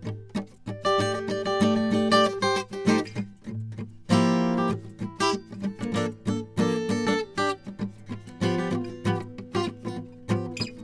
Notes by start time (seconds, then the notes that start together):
0.06 A3 D#4 G4
0.35 A3 D#4 G4
0.67 D#4 G4 D5
0.86 G4 D5
0.99 A3 D#4 G4 D5
1.15 G4
1.29 D#4 G4 D5
1.47 G4 D5
1.62 A3 D#4 G4 D5
1.75 G4 D5
1.92 A3 D#4 G4 D5
2.13 D#4 G4 D5
2.43 G4 C5
2.56 G4 C5
2.72 G4 C5
2.86 F3 A3 D#4 G4
2.91 C5
3.79 A#3
4.11 F3 A#3 E4 G4
4.59 G4
5.05 E4
5.21 E4 G4
5.53 D4
5.65 C#4 A4
5.80 A#3 D4 A4
5.93 F3 A#3 D4
5.99 A4
6.28 A#3 D4 A4
6.58 F3 A#3 D4 A4
6.90 A#3 D4 A4
7.07 A#3 D4 A4
7.38 D4 G4
8.11 B3 F4
8.42 F3 B3 F4 G4
8.60 F4 G4
8.73 B3 F4
8.87 F4
9.06 F3 B3 F4 G4
9.55 B3 F4 G4
9.86 B3 F4
10.30 F3 B3 F4 G4
10.61 A#3